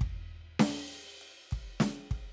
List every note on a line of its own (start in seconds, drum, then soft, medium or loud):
0.01 kick medium
0.60 snare loud
0.60 ride loud
0.92 ride soft
1.21 ride medium
1.51 kick medium
1.51 ride medium
1.80 snare loud
1.80 ride medium
2.11 kick medium
2.11 ride soft